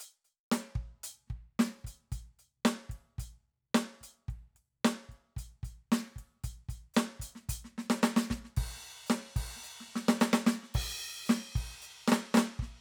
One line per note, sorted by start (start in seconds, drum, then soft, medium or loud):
0.03 closed hi-hat medium
0.25 closed hi-hat soft
0.52 closed hi-hat medium
0.52 snare loud
0.75 kick medium
1.03 closed hi-hat loud
1.27 kick soft
1.27 snare soft
1.27 closed hi-hat soft
1.59 snare loud
1.84 closed hi-hat medium
1.84 kick soft
2.12 closed hi-hat medium
2.12 kick soft
2.39 closed hi-hat soft
2.65 snare loud
2.89 kick soft
2.89 closed hi-hat soft
3.18 closed hi-hat medium
3.18 kick soft
3.74 snare loud
4.01 closed hi-hat medium
4.01 kick soft
4.28 kick soft
4.28 closed hi-hat soft
4.55 kick soft
4.55 closed hi-hat soft
4.84 snare loud
5.09 kick soft
5.09 closed hi-hat soft
5.36 closed hi-hat medium
5.36 kick soft
5.63 closed hi-hat soft
5.63 kick soft
5.92 snare loud
6.16 kick soft
6.16 closed hi-hat soft
6.44 closed hi-hat medium
6.44 kick soft
6.69 closed hi-hat medium
6.69 kick soft
6.94 snare loud
6.94 hi-hat pedal medium
7.20 closed hi-hat medium
7.20 kick soft
7.35 snare soft
7.49 closed hi-hat loud
7.49 kick soft
7.64 snare soft
7.78 snare medium
7.90 snare loud
8.03 snare loud
8.03 hi-hat pedal medium
8.16 snare loud
8.30 kick soft
8.30 snare medium
8.44 snare soft
8.57 kick medium
8.57 crash medium
8.76 snare soft
8.76 open hi-hat soft
9.06 snare loud
9.06 hi-hat pedal medium
9.36 kick medium
9.36 crash medium
9.56 snare soft
9.63 hi-hat pedal medium
9.80 snare soft
9.96 snare medium
10.08 snare loud
10.20 snare loud
10.20 hi-hat pedal medium
10.33 snare loud
10.46 snare loud
10.63 snare soft
10.74 kick medium
10.74 hi-hat pedal soft
10.74 crash loud
11.26 snare loud
11.26 hi-hat pedal medium
11.55 kick medium
11.55 crash medium
11.82 hi-hat pedal medium
12.08 snare loud
12.12 snare loud
12.34 snare loud
12.34 hi-hat pedal medium
12.37 snare loud
12.59 kick medium
12.59 snare soft